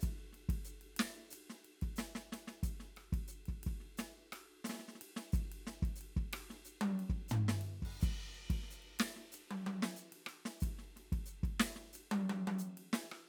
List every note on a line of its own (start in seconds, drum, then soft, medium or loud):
0.01 kick medium
0.01 hi-hat pedal medium
0.01 ride soft
0.18 snare soft
0.33 snare soft
0.33 ride soft
0.49 kick medium
0.49 ride medium
0.65 snare soft
0.65 hi-hat pedal medium
0.82 ride soft
0.97 snare medium
0.97 ride medium
1.18 snare soft
1.31 hi-hat pedal medium
1.31 ride medium
1.50 snare soft
1.65 ride soft
1.82 kick soft
1.82 ride soft
1.97 snare medium
1.97 hi-hat pedal medium
1.97 ride soft
2.16 snare medium
2.33 snare medium
2.33 ride soft
2.48 snare soft
2.63 kick medium
2.63 hi-hat pedal medium
2.63 ride soft
2.80 snare soft
2.97 cross-stick soft
2.97 ride soft
3.13 kick medium
3.13 ride soft
3.28 hi-hat pedal medium
3.46 kick soft
3.46 ride soft
3.64 kick soft
3.64 ride medium
3.81 snare soft
3.98 snare medium
3.98 hi-hat pedal medium
3.98 ride soft
4.33 cross-stick medium
4.33 ride medium
4.65 snare medium
4.65 hi-hat pedal medium
4.65 ride medium
4.70 snare medium
4.74 snare soft
4.80 snare soft
4.89 snare soft
4.96 snare soft
5.02 ride medium
5.17 snare medium
5.33 kick medium
5.33 hi-hat pedal medium
5.33 ride soft
5.52 ride soft
5.67 snare medium
5.83 kick medium
5.83 ride soft
5.96 hi-hat pedal medium
6.01 ride soft
6.17 kick medium
6.33 cross-stick medium
6.33 ride medium
6.50 snare soft
6.65 hi-hat pedal medium
6.65 ride soft
6.82 high tom loud
7.00 ride soft
7.10 kick medium
7.29 floor tom loud
7.29 hi-hat pedal medium
7.49 snare medium
7.62 ride soft
7.83 kick soft
7.83 crash soft
8.01 kick medium
8.01 hi-hat pedal medium
8.01 crash medium
8.24 hi-hat pedal soft
8.35 ride soft
8.50 kick medium
8.50 ride soft
8.64 snare soft
8.71 hi-hat pedal medium
8.83 ride soft
9.00 snare medium
9.00 ride medium
9.17 snare soft
9.32 hi-hat pedal medium
9.32 ride soft
9.51 high tom medium
9.67 high tom medium
9.83 snare medium
9.97 hi-hat pedal medium
10.13 ride soft
10.27 cross-stick medium
10.27 ride soft
10.46 snare medium
10.61 kick medium
10.61 hi-hat pedal medium
10.61 ride medium
10.79 snare soft
10.97 snare soft
10.97 ride soft
11.13 kick medium
11.13 ride soft
11.26 hi-hat pedal medium
11.44 kick medium
11.44 ride soft
11.60 snare loud
11.60 ride medium
11.76 snare soft
11.93 hi-hat pedal medium
11.93 ride soft
12.12 high tom loud
12.30 high tom loud
12.48 high tom loud
12.59 hi-hat pedal medium
12.78 ride soft
12.93 snare medium
12.93 ride medium
13.12 cross-stick medium